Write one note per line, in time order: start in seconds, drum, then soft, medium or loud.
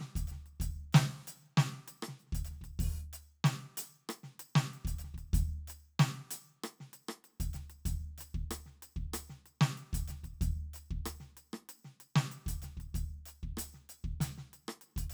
0.01 snare soft
0.16 kick medium
0.16 percussion medium
0.28 percussion soft
0.32 snare soft
0.46 percussion soft
0.60 kick medium
0.60 percussion medium
0.93 snare loud
0.93 percussion soft
1.09 snare soft
1.28 percussion medium
1.58 snare loud
1.73 snare soft
1.88 percussion medium
2.03 cross-stick medium
2.09 snare soft
2.20 percussion soft
2.27 snare soft
2.33 kick medium
2.33 percussion medium
2.45 percussion medium
2.51 snare soft
2.62 kick soft
2.62 percussion soft
2.79 kick medium
2.79 percussion medium
3.13 percussion medium
3.45 snare medium
3.45 percussion medium
3.62 snare soft
3.78 percussion loud
4.09 cross-stick medium
4.09 percussion medium
4.24 snare soft
4.40 percussion medium
4.56 snare loud
4.74 percussion soft
4.78 snare soft
4.85 kick medium
4.85 percussion medium
4.99 percussion medium
5.04 snare soft
5.15 kick soft
5.15 percussion soft
5.34 kick medium
5.34 percussion medium
5.68 percussion medium
5.70 percussion medium
6.00 snare loud
6.00 percussion medium
6.16 snare soft
6.31 percussion loud
6.64 cross-stick medium
6.64 percussion medium
6.81 snare soft
6.94 percussion medium
7.09 cross-stick medium
7.25 percussion soft
7.40 kick medium
7.40 percussion medium
7.54 snare soft
7.54 percussion medium
7.70 kick soft
7.70 percussion soft
7.86 kick medium
7.86 percussion medium
8.06 kick soft
8.18 snare soft
8.18 percussion medium
8.21 percussion medium
8.35 kick medium
8.51 cross-stick medium
8.51 percussion medium
8.66 snare soft
8.83 percussion medium
8.97 kick soft
9.14 cross-stick medium
9.14 percussion loud
9.30 snare soft
9.46 percussion soft
9.61 snare loud
9.78 percussion soft
9.93 kick medium
9.93 percussion loud
10.08 snare soft
10.08 percussion medium
10.24 kick soft
10.24 percussion soft
10.41 kick medium
10.41 percussion medium
10.74 percussion medium
10.76 percussion medium
10.91 kick medium
11.06 cross-stick medium
11.06 percussion loud
11.21 snare soft
11.37 percussion medium
11.54 cross-stick medium
11.69 percussion medium
11.85 snare soft
12.01 percussion medium
12.16 snare medium
12.32 percussion medium
12.47 kick medium
12.47 percussion medium
12.62 snare soft
12.62 percussion medium
12.77 kick soft
12.77 percussion soft
12.95 kick medium
12.95 percussion medium
13.26 percussion medium
13.29 percussion medium
13.43 kick soft
13.57 cross-stick medium
13.57 percussion loud
13.74 snare soft
13.90 percussion medium
14.04 kick medium
14.21 snare medium
14.21 percussion medium
14.38 snare soft
14.54 percussion medium
14.69 cross-stick medium
14.82 percussion medium
14.97 kick medium
14.97 percussion medium
15.10 percussion medium